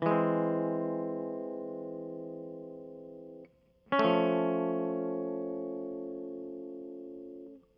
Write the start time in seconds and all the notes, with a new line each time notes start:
0.04 E3 G#3
0.12 C4
3.93 C#4
4.00 A3
4.06 F3